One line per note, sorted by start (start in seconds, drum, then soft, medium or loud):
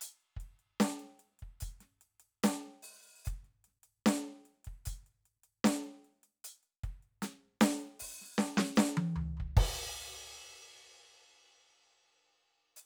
0.01 closed hi-hat medium
0.20 closed hi-hat soft
0.37 kick soft
0.37 closed hi-hat soft
0.59 closed hi-hat soft
0.80 closed hi-hat medium
0.80 snare loud
0.99 closed hi-hat soft
1.19 closed hi-hat soft
1.39 kick soft
1.39 closed hi-hat soft
1.60 closed hi-hat medium
1.60 kick soft
1.80 snare soft
1.80 closed hi-hat soft
2.01 closed hi-hat soft
2.20 closed hi-hat soft
2.43 closed hi-hat medium
2.43 snare loud
2.63 closed hi-hat soft
2.83 open hi-hat medium
3.25 open hi-hat medium
3.25 kick medium
3.25 hi-hat pedal medium
3.43 snare soft
3.43 closed hi-hat soft
3.64 snare soft
3.64 closed hi-hat soft
3.83 closed hi-hat soft
4.06 closed hi-hat medium
4.06 snare loud
4.45 closed hi-hat soft
4.54 snare soft
4.65 kick soft
4.65 closed hi-hat soft
4.85 closed hi-hat medium
4.85 kick soft
5.06 closed hi-hat soft
5.25 closed hi-hat soft
5.44 closed hi-hat soft
5.64 closed hi-hat medium
5.64 snare loud
5.84 closed hi-hat soft
6.05 closed hi-hat soft
6.23 closed hi-hat soft
6.44 closed hi-hat medium
6.63 closed hi-hat soft
6.84 kick soft
6.84 snare soft
6.84 closed hi-hat soft
7.03 closed hi-hat soft
7.22 closed hi-hat medium
7.22 snare medium
7.61 closed hi-hat medium
7.61 snare loud
7.78 open hi-hat soft
8.00 open hi-hat loud
8.00 kick soft
8.21 snare soft
8.27 snare soft
8.38 snare medium
8.57 snare loud
8.76 snare loud
8.76 hi-hat pedal medium
8.97 high tom loud
9.16 floor tom medium
9.37 kick soft
9.37 floor tom soft
9.57 kick loud
9.57 crash loud
12.76 hi-hat pedal medium